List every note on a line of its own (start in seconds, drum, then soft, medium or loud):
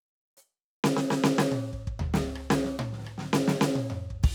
0.37 hi-hat pedal medium
0.84 snare loud
0.97 snare medium
1.10 snare loud
1.24 snare loud
1.38 snare loud
1.52 high tom loud
1.73 kick medium
1.87 kick medium
1.99 floor tom loud
2.14 snare loud
2.24 snare soft
2.36 cross-stick medium
2.50 snare loud
2.65 snare medium
2.79 high tom loud
2.92 snare soft
2.98 snare soft
3.02 snare soft
3.07 cross-stick medium
3.18 snare medium
3.21 snare medium
3.25 snare soft
3.33 snare loud
3.48 snare loud
3.61 snare loud
3.75 high tom loud
3.90 mid tom loud
4.10 kick medium
4.23 kick loud
4.23 crash medium